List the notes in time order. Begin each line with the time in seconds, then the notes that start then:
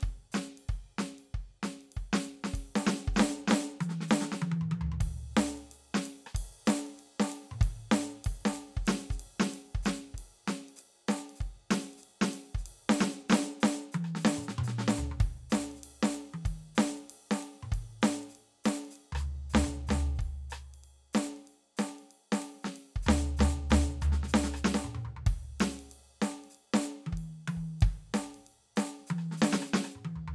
0.01 kick, ride
0.32 snare, hi-hat pedal, ride
0.58 ride
0.69 kick, ride
0.99 snare, hi-hat pedal, ride
1.19 ride
1.34 kick
1.63 snare, hi-hat pedal, ride
1.81 ride
1.92 ride
1.97 kick
2.13 snare
2.18 hi-hat pedal
2.25 ride
2.44 snare
2.54 kick, ride
2.76 snare
2.81 hi-hat pedal
2.87 snare
3.08 kick
3.14 snare, hi-hat pedal
3.20 snare
3.48 snare
3.51 snare, hi-hat pedal
3.81 hi-hat pedal, high tom
3.89 snare
4.01 snare
4.08 snare, hi-hat pedal
4.21 snare
4.32 snare, hi-hat pedal
4.42 high tom
4.61 mid tom
4.71 high tom
4.81 floor tom
4.92 mid tom
5.01 kick, ride
5.33 hi-hat pedal
5.37 snare, ride
5.58 ride
5.72 hi-hat pedal, ride
5.95 snare
6.02 hi-hat pedal, ride
6.27 cross-stick
6.35 kick, ride
6.66 snare, hi-hat pedal, ride
6.87 ride
6.93 hi-hat pedal
6.99 ride
7.20 snare
7.24 hi-hat pedal
7.32 ride
7.51 mid tom
7.61 kick, ride
7.92 snare, ride
8.25 kick, ride
8.46 snare
8.52 hi-hat pedal
8.56 ride
8.77 kick
8.85 snare, hi-hat pedal, ride
9.11 kick, hi-hat pedal
9.20 ride
9.40 snare
9.54 ride
9.75 kick
9.83 kick, snare, hi-hat pedal, ride
10.14 kick, ride
10.48 snare, hi-hat pedal, ride
10.69 ride
10.76 hi-hat pedal, ride
11.09 snare, hi-hat pedal, ride
11.30 ride
11.36 hi-hat pedal
11.41 kick, ride
11.71 snare, hi-hat pedal, ride
11.94 ride
11.98 hi-hat pedal
12.04 ride
12.22 snare, hi-hat pedal
12.34 ride
12.55 kick, hi-hat pedal
12.66 ride
12.90 snare
13.01 snare
13.29 snare, hi-hat pedal
13.33 snare
13.61 snare, hi-hat pedal
13.92 hi-hat pedal, high tom
14.04 cross-stick
14.15 snare
14.21 hi-hat pedal
14.25 snare
14.38 hi-hat pedal, mid tom
14.49 snare
14.58 mid tom
14.64 hi-hat pedal
14.68 snare
14.79 snare
14.88 snare, hi-hat pedal
14.98 floor tom
15.12 floor tom
15.20 kick, ride
15.50 snare, hi-hat pedal, ride
15.72 ride
15.76 hi-hat pedal
15.84 ride
16.03 snare
16.08 hi-hat pedal
16.15 ride
16.34 high tom
16.45 kick, ride
16.75 snare, hi-hat pedal, ride
16.98 ride
17.10 ride
17.31 snare
17.36 hi-hat pedal
17.43 ride
17.63 mid tom
17.72 kick, ride
18.02 snare, hi-hat pedal, ride
18.23 ride
18.29 hi-hat pedal
18.35 ride
18.64 snare, hi-hat pedal, ride
18.85 ride
18.91 hi-hat pedal
18.96 ride
19.13 cross-stick, floor tom
19.18 floor tom, hi-hat pedal
19.50 hi-hat pedal
19.54 snare, floor tom
19.64 floor tom
19.87 snare, floor tom, hi-hat pedal
20.15 hi-hat pedal
20.19 kick, ride
20.50 cross-stick, hi-hat pedal, ride
20.74 ride
20.84 ride
21.13 snare, hi-hat pedal, ride
21.37 ride
21.48 ride
21.77 snare, hi-hat pedal, ride
21.99 ride
22.11 ride
22.32 snare, hi-hat pedal
22.42 ride
22.63 snare, hi-hat pedal
22.76 ride
22.96 kick
23.03 floor tom, hi-hat pedal
23.09 snare
23.37 snare, floor tom, hi-hat pedal
23.70 snare, floor tom, hi-hat pedal
24.02 floor tom, hi-hat pedal
24.12 snare
24.23 snare
24.28 hi-hat pedal
24.34 snare
24.44 snare
24.54 cross-stick, hi-hat pedal
24.65 snare
24.75 snare
24.79 hi-hat pedal
24.84 mid tom
24.95 mid tom
25.05 floor tom
25.17 floor tom
25.27 kick, ride
25.60 snare, hi-hat pedal, ride
25.79 ride
25.88 hi-hat pedal, ride
26.22 snare, hi-hat pedal, ride
26.44 ride
26.50 hi-hat pedal
26.55 ride
26.74 snare
26.82 hi-hat pedal, ride
27.07 high tom
27.13 kick
27.18 ride
27.48 high tom, ride
27.57 kick
27.81 kick, ride
28.14 snare, hi-hat pedal, ride
28.35 ride
28.47 ride
28.76 snare, hi-hat pedal, ride
29.07 hi-hat pedal, high tom
29.19 cross-stick
29.32 snare
29.38 hi-hat pedal
29.42 snare
29.53 snare
29.62 cross-stick
29.66 hi-hat pedal
29.74 snare
29.84 cross-stick
29.90 hi-hat pedal
29.96 mid tom
30.05 high tom
30.16 floor tom
30.28 floor tom